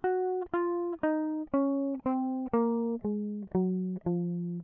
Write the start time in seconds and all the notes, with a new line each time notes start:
0.04 F#4
0.54 F4
1.03 D#4
1.54 C#4
2.06 C4
2.54 A#3
3.05 G#3
3.56 F#3
4.07 F3